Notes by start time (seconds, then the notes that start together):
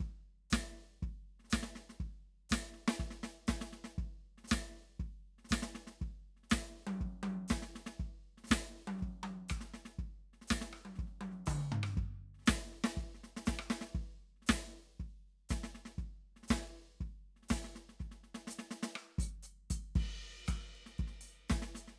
0.01 kick
0.51 kick, snare, hi-hat pedal
1.03 kick
1.40 snare
1.45 snare
1.51 kick, snare, hi-hat pedal
1.63 snare
1.76 snare
1.90 snare
2.01 kick
2.50 kick, snare, hi-hat pedal
2.74 snare
2.88 snare
3.00 kick, snare
3.11 snare
3.24 snare
3.48 kick, snare, hi-hat pedal
3.62 snare
3.73 snare
3.85 snare
3.99 kick
4.38 snare
4.45 snare, hi-hat pedal
4.52 kick, snare
5.00 kick
5.39 snare
5.45 snare
5.50 kick, snare, hi-hat pedal
5.63 snare
5.76 snare
5.88 snare
5.99 kick, hi-hat pedal
6.37 snare
6.44 snare
6.51 kick, snare, hi-hat pedal
6.88 high tom
7.02 kick
7.24 high tom
7.49 kick, snare, hi-hat pedal
7.63 snare
7.76 snare
7.87 snare
8.00 kick
8.38 snare
8.45 snare, hi-hat pedal
8.49 kick, snare
8.52 snare
8.59 snare
8.78 snare
8.88 high tom
8.99 snare
9.03 kick
9.24 high tom
9.49 kick, cross-stick, hi-hat pedal
9.61 snare
9.74 snare
9.86 snare
9.99 kick
10.34 snare
10.42 snare
10.48 kick, snare, hi-hat pedal
10.62 snare
10.74 cross-stick
10.86 high tom
10.96 kick, snare
11.07 snare
11.22 high tom
11.32 snare
11.47 kick, hi-hat pedal, mid tom
11.61 snare
11.73 floor tom
11.84 cross-stick
11.98 kick
12.35 snare
12.39 snare
12.42 snare
12.47 kick, snare, hi-hat pedal
12.73 snare
12.85 snare
12.98 kick, snare
13.15 snare
13.24 snare
13.37 snare
13.46 kick, snare, hi-hat pedal
13.60 cross-stick
13.71 snare
13.82 snare
13.95 kick
14.37 snare
14.43 snare
14.47 snare, hi-hat pedal
14.50 kick, snare
15.01 kick
15.50 kick, snare, hi-hat pedal
15.64 snare
15.75 snare
15.86 snare
15.98 kick, hi-hat pedal
16.37 snare
16.44 snare
16.49 kick, snare, hi-hat pedal
16.58 snare
17.01 kick
17.37 snare
17.43 snare
17.49 kick, snare, hi-hat pedal
17.65 snare
17.76 snare
17.90 snare
18.00 kick, snare
18.12 snare
18.24 snare
18.35 snare
18.48 snare, hi-hat pedal
18.59 snare
18.71 snare
18.83 snare
18.96 cross-stick
19.19 open hi-hat, kick
19.43 hi-hat pedal
19.71 open hi-hat, kick
19.96 kick, crash
20.47 kick, cross-stick, closed hi-hat, hi-hat pedal
20.76 closed hi-hat
20.87 snare
20.99 kick, closed hi-hat
21.08 snare
21.22 snare, open hi-hat
21.49 kick, snare, closed hi-hat, hi-hat pedal
21.63 snare
21.75 closed hi-hat, snare
21.88 snare